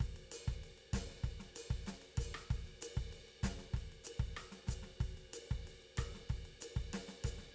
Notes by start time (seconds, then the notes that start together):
0.01 kick, ride
0.17 ride
0.32 hi-hat pedal, ride
0.48 kick, snare
0.64 ride
0.79 ride
0.94 kick, snare, hi-hat pedal, ride
1.10 snare
1.24 kick, ride
1.40 snare, ride
1.56 hi-hat pedal, ride
1.71 kick
1.87 snare, ride
2.02 ride
2.18 kick, hi-hat pedal, ride
2.35 cross-stick
2.51 kick, ride
2.68 ride
2.82 hi-hat pedal, ride
2.97 kick
3.13 ride
3.29 ride
3.44 kick, snare, hi-hat pedal, ride
3.59 snare
3.74 kick, snare, ride
3.93 ride
4.05 hi-hat pedal, ride
4.20 kick
4.37 cross-stick, ride
4.52 snare, ride
4.67 kick, snare, hi-hat pedal, ride
4.83 snare
5.01 kick, ride
5.18 ride
5.34 hi-hat pedal, ride
5.51 kick, snare
5.68 ride
5.83 ride
5.98 kick, cross-stick, hi-hat pedal, ride
6.15 snare
6.30 kick, ride
6.46 ride
6.61 hi-hat pedal, ride
6.77 kick
6.94 snare, ride
7.09 snare, ride
7.25 kick, snare, hi-hat pedal, ride
7.39 snare